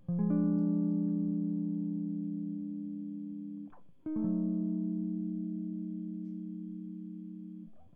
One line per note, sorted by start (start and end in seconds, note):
0.10 3.63 F3
0.20 3.72 G#3
0.31 3.67 D4
4.07 7.65 D#4
4.17 7.71 A3
4.25 7.71 F#3
7.65 7.71 D4